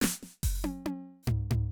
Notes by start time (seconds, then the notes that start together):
0.01 snare
0.04 snare
0.23 snare
0.43 open hi-hat, kick
0.64 high tom
0.86 high tom
1.23 hi-hat pedal
1.27 floor tom
1.51 floor tom